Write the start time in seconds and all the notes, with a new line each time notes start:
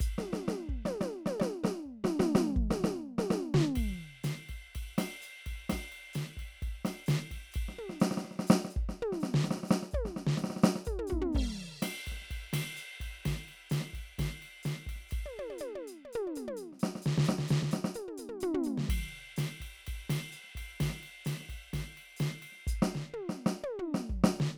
0.01 kick, hi-hat pedal, ride
0.08 kick
0.19 snare, mid tom
0.33 snare, mid tom
0.49 snare, mid tom
0.70 kick
0.86 snare, high tom
1.01 snare, high tom
1.27 snare, high tom
1.40 snare, high tom
1.64 snare, mid tom
1.86 kick
2.04 snare, floor tom
2.19 snare, floor tom
2.36 snare, floor tom
2.57 kick
2.71 snare, mid tom
2.84 snare, mid tom
3.19 snare, mid tom
3.31 snare, mid tom
3.54 snare, floor tom
3.76 kick, ride
3.83 kick
3.90 snare
4.24 snare, hi-hat pedal, ride
4.49 kick, ride
4.55 kick
4.76 kick, ride
4.99 snare, ride
5.23 hi-hat pedal, ride
5.47 kick, ride
5.52 kick
5.70 kick, snare, hi-hat pedal, ride
5.78 kick
5.93 ride
6.14 snare, hi-hat pedal, ride
6.38 kick, ride
6.43 kick
6.61 kick, hi-hat pedal, ride
6.68 kick
6.86 snare, ride
7.07 snare, hi-hat pedal, ride
7.32 kick, ride
7.37 kick, snare
7.41 snare
7.52 hi-hat pedal, ride
7.57 kick
7.69 snare
7.79 mid tom
7.90 snare
8.01 snare, hi-hat pedal
8.12 snare
8.18 snare
8.25 snare
8.32 snare
8.37 snare
8.40 snare
8.48 snare, hi-hat pedal
8.66 snare
8.71 hi-hat pedal
8.77 kick
8.85 kick
8.90 snare
9.03 mid tom
9.13 snare
9.21 snare, hi-hat pedal
9.35 snare
9.44 snare, hi-hat pedal
9.52 snare
9.58 snare
9.64 snare, hi-hat pedal
9.72 snare
9.83 snare
9.92 kick, hi-hat pedal, high tom
10.00 kick
10.06 snare
10.17 snare
10.27 snare
10.38 snare, hi-hat pedal
10.45 snare
10.51 snare
10.57 snare
10.64 snare, hi-hat pedal
10.76 snare
10.86 kick, hi-hat pedal, mid tom
10.93 kick
10.99 mid tom
11.08 floor tom, hi-hat pedal
11.13 kick
11.22 floor tom
11.32 kick, hi-hat pedal, crash, floor tom
11.42 kick
11.83 snare, hi-hat pedal, ride
12.07 kick, ride
12.12 kick, snare
12.30 kick, hi-hat pedal, ride
12.54 snare, ride
12.78 hi-hat pedal, ride
13.01 kick, ride
13.06 kick
13.26 kick, snare, hi-hat pedal, ride
13.32 kick
13.49 ride
13.71 snare, hi-hat pedal, ride
13.82 snare
13.94 kick, ride
13.99 kick
14.18 kick, snare, hi-hat pedal, ride
14.25 kick
14.43 ride
14.64 snare, hi-hat pedal, ride
14.83 snare
14.87 kick, ride
14.93 kick, snare
15.10 kick, hi-hat pedal, ride
15.26 high tom
15.39 high tom
15.50 high tom
15.59 hi-hat pedal, high tom
15.76 high tom
15.88 hi-hat pedal
16.05 high tom
16.13 hi-hat pedal, mid tom
16.28 high tom
16.36 hi-hat pedal, mid tom
16.48 high tom
16.58 hi-hat pedal
16.63 mid tom
16.73 snare
16.80 snare, hi-hat pedal
16.96 snare
17.03 snare, hi-hat pedal
17.19 snare
17.25 hi-hat pedal
17.30 snare
17.39 snare
17.49 snare, hi-hat pedal
17.63 snare
17.72 snare, hi-hat pedal
17.85 snare
17.95 hi-hat pedal, mid tom
18.08 mid tom
18.18 hi-hat pedal, mid tom
18.29 mid tom
18.41 hi-hat pedal, floor tom
18.55 floor tom
18.65 floor tom, hi-hat pedal
18.78 snare
18.90 kick, hi-hat pedal, ride
19.37 snare, hi-hat pedal, ride
19.61 kick, ride
19.66 kick
19.86 kick, hi-hat pedal, ride
20.10 snare, ride
20.33 hi-hat pedal, ride
20.45 snare
20.56 kick, ride
20.61 kick
20.81 kick, snare, hi-hat pedal, ride
20.88 kick, snare
21.04 ride
21.26 snare, hi-hat pedal, ride
21.41 snare
21.50 kick, ride
21.55 kick
21.74 kick, snare, hi-hat pedal, ride
21.79 kick
21.98 ride
22.17 snare, hi-hat pedal, ride
22.32 snare
22.43 ride
22.53 snare
22.68 kick, hi-hat pedal
22.74 kick
22.83 snare
22.96 snare
23.14 mid tom
23.30 snare
23.47 snare
23.64 high tom
23.79 floor tom
23.95 snare
24.10 kick
24.16 kick
24.25 snare
24.41 snare